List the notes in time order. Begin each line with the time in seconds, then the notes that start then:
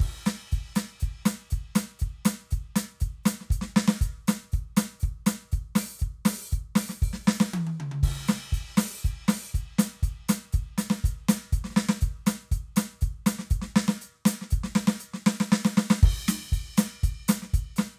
0.01 kick, crash
0.26 closed hi-hat, snare
0.52 closed hi-hat, kick
0.76 closed hi-hat, snare
1.01 closed hi-hat, kick
1.26 closed hi-hat, snare
1.51 closed hi-hat, kick
1.76 closed hi-hat, snare
2.00 closed hi-hat, kick
2.26 closed hi-hat, snare
2.51 closed hi-hat, kick
2.76 closed hi-hat, snare
3.01 closed hi-hat, kick
3.24 closed hi-hat, snare, hi-hat pedal
3.41 snare
3.51 closed hi-hat, kick
3.62 snare
3.77 snare
3.88 snare
4.00 closed hi-hat, kick, hi-hat pedal
4.28 closed hi-hat, snare
4.52 open hi-hat, kick
4.77 closed hi-hat, snare
5.00 open hi-hat, kick
5.27 closed hi-hat, snare
5.52 closed hi-hat, kick
5.76 open hi-hat, snare
5.98 closed hi-hat, hi-hat pedal
6.02 kick
6.26 open hi-hat, snare
6.52 closed hi-hat, kick
6.76 open hi-hat, snare
6.90 snare
7.02 open hi-hat, kick
7.14 snare
7.28 snare
7.32 hi-hat pedal
7.41 snare
7.54 high tom
7.67 high tom
7.81 mid tom
7.92 mid tom
8.03 kick, crash
8.28 closed hi-hat, snare
8.53 closed hi-hat, kick
8.78 open hi-hat, snare
9.03 closed hi-hat, kick, hi-hat pedal
9.29 open hi-hat, snare
9.55 closed hi-hat, kick
9.79 closed hi-hat, snare
10.03 closed hi-hat, kick
10.29 closed hi-hat, snare
10.53 closed hi-hat, kick
10.78 closed hi-hat, snare
10.91 snare
11.05 closed hi-hat, kick
11.29 closed hi-hat, snare
11.53 closed hi-hat, kick
11.65 snare
11.71 snare
11.77 snare
11.89 snare
12.01 closed hi-hat, kick
12.27 closed hi-hat, snare
12.52 closed hi-hat, kick
12.77 closed hi-hat, snare
13.02 closed hi-hat, kick
13.27 closed hi-hat, snare
13.39 snare
13.51 closed hi-hat, kick
13.62 snare
13.76 snare
13.89 snare
14.02 closed hi-hat
14.26 closed hi-hat, snare
14.42 snare
14.51 closed hi-hat, kick
14.64 snare
14.76 snare
14.88 snare
15.00 closed hi-hat
15.14 snare
15.27 snare
15.41 snare
15.53 snare
15.65 snare
15.78 snare
15.91 snare
16.03 kick, crash
16.29 closed hi-hat, snare
16.53 closed hi-hat, kick
16.78 closed hi-hat, snare
17.04 closed hi-hat, kick
17.29 closed hi-hat, snare
17.43 snare
17.49 snare
17.54 closed hi-hat, kick
17.77 closed hi-hat, snare